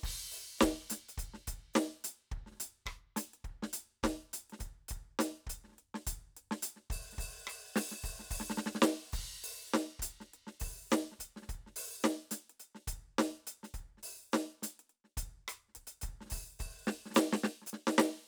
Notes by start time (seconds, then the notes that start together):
0.01 kick, hi-hat pedal, crash
0.31 open hi-hat
0.58 snare, hi-hat pedal
0.63 kick
0.90 closed hi-hat, snare
1.09 closed hi-hat
1.18 closed hi-hat, kick
1.34 snare
1.47 closed hi-hat, kick
1.74 snare, hi-hat pedal
2.04 closed hi-hat
2.32 kick, closed hi-hat
2.46 snare
2.51 snare
2.60 closed hi-hat, snare
2.86 kick, cross-stick
3.16 open hi-hat, snare
3.33 closed hi-hat
3.44 kick, closed hi-hat
3.63 snare
3.73 closed hi-hat
4.03 kick, snare, closed hi-hat
4.33 closed hi-hat
4.50 snare, closed hi-hat
4.59 open hi-hat, kick, snare
4.88 closed hi-hat, kick
5.19 closed hi-hat, snare
5.47 closed hi-hat, kick
5.64 snare
5.68 snare
5.72 snare
5.76 snare, closed hi-hat
5.94 snare
6.07 closed hi-hat, kick
6.37 closed hi-hat
6.51 snare
6.63 closed hi-hat
6.76 snare
6.90 open hi-hat, kick
7.13 snare
7.17 open hi-hat, kick, snare
7.47 open hi-hat, cross-stick
7.76 open hi-hat, snare
7.91 snare
8.04 open hi-hat, kick
8.19 snare
8.31 open hi-hat, kick
8.40 snare
8.50 snare
8.57 snare
8.66 snare
8.75 snare
8.82 snare
9.13 kick, hi-hat pedal, crash
9.44 open hi-hat
9.71 snare, hi-hat pedal
9.99 closed hi-hat, kick
10.20 snare, closed hi-hat
10.34 closed hi-hat
10.47 snare
10.60 open hi-hat, kick
10.90 snare, closed hi-hat, hi-hat pedal
11.12 snare
11.19 closed hi-hat, kick
11.36 snare
11.42 snare
11.47 closed hi-hat, kick, snare
11.67 snare
11.76 open hi-hat
12.02 snare, hi-hat pedal
12.31 closed hi-hat, snare
12.50 closed hi-hat
12.60 closed hi-hat
12.75 snare
12.87 closed hi-hat, kick
13.18 snare, closed hi-hat
13.47 closed hi-hat
13.63 closed hi-hat, snare
13.74 closed hi-hat, kick
13.97 snare
14.03 open hi-hat
14.32 snare, hi-hat pedal
14.63 closed hi-hat, snare
14.79 closed hi-hat
14.90 closed hi-hat
15.04 snare
15.17 closed hi-hat, kick
15.48 closed hi-hat, cross-stick
15.68 snare
15.75 kick, closed hi-hat
15.87 closed hi-hat
16.01 closed hi-hat, kick
16.21 snare
16.26 snare
16.30 open hi-hat, kick, snare
16.33 snare
16.59 open hi-hat, kick
16.87 snare
17.06 snare
17.10 snare
17.14 snare, hi-hat pedal
17.16 snare
17.33 snare
17.44 snare
17.62 snare
17.66 hi-hat pedal
17.73 snare
17.87 snare
17.98 snare
18.16 snare